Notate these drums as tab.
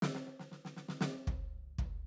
HH |p---------------|
SD |oggggggoo-------|
FT |----------o---o-|
BD |----------o---o-|